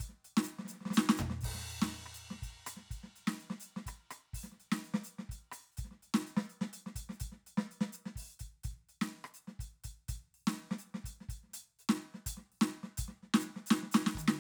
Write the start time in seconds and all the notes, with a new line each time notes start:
0.01 closed hi-hat, kick
0.10 snare
0.25 closed hi-hat
0.38 snare
0.44 hi-hat pedal
0.49 closed hi-hat
0.60 snare
0.66 snare, hi-hat pedal
0.70 snare
0.74 snare
0.82 snare
0.86 snare
0.91 snare, hi-hat pedal
0.98 snare
1.10 snare
1.18 kick, hi-hat pedal, floor tom
1.31 snare
1.42 kick, hi-hat pedal, crash
1.50 kick
1.55 snare
1.62 snare
1.71 closed hi-hat
1.83 snare
1.95 closed hi-hat
2.07 cross-stick
2.15 closed hi-hat, hi-hat pedal
2.31 snare
2.43 closed hi-hat, kick
2.67 closed hi-hat, cross-stick
2.77 snare
2.92 closed hi-hat, kick
3.04 snare
3.17 closed hi-hat
3.28 snare
3.40 closed hi-hat
3.51 snare
3.61 closed hi-hat, hi-hat pedal
3.77 snare
3.87 closed hi-hat, kick, cross-stick
4.12 closed hi-hat, cross-stick
4.34 open hi-hat, kick
4.44 snare
4.53 snare
4.61 closed hi-hat
4.73 snare
4.85 closed hi-hat
4.95 snare
5.05 closed hi-hat, hi-hat pedal
5.20 snare
5.30 closed hi-hat, kick
5.53 open hi-hat, cross-stick
5.73 hi-hat pedal
5.78 closed hi-hat, kick
5.85 snare
5.92 snare
6.03 closed hi-hat
6.15 snare
6.27 closed hi-hat
6.38 snare
6.44 hi-hat pedal
6.50 closed hi-hat
6.62 snare
6.74 closed hi-hat
6.87 snare
6.96 open hi-hat, kick
7.10 snare, hi-hat pedal
7.21 closed hi-hat, kick
7.33 snare
7.47 closed hi-hat
7.58 snare
7.72 closed hi-hat
7.82 snare
7.93 hi-hat pedal
8.06 snare
8.17 open hi-hat, kick
8.40 closed hi-hat, kick
8.64 closed hi-hat, kick
8.71 kick
8.74 kick
8.90 closed hi-hat
9.02 snare
9.14 closed hi-hat
9.25 cross-stick
9.35 closed hi-hat, hi-hat pedal
9.48 snare
9.60 closed hi-hat, kick
9.85 closed hi-hat, kick
10.09 closed hi-hat, kick, snare
10.16 kick
10.35 open hi-hat
10.48 snare, hi-hat pedal
10.60 closed hi-hat
10.72 snare
10.79 closed hi-hat, hi-hat pedal
10.95 snare
11.05 closed hi-hat, kick
11.21 snare
11.30 closed hi-hat, kick
11.44 snare
11.50 snare
11.53 open hi-hat, snare
11.55 snare
11.80 open hi-hat, hi-hat pedal
11.90 snare
12.03 closed hi-hat
12.15 snare
12.27 closed hi-hat, kick
12.38 snare
12.53 open hi-hat
12.62 snare
12.69 hi-hat pedal
12.75 closed hi-hat
12.84 snare
12.98 closed hi-hat, kick
13.06 kick
13.09 kick, snare
13.24 snare
13.35 snare
13.41 hi-hat pedal
13.47 snare
13.57 snare
13.67 hi-hat pedal
13.71 snare
13.84 snare
13.93 snare, hi-hat pedal
14.07 snare
14.16 kick, hi-hat pedal, high tom
14.29 snare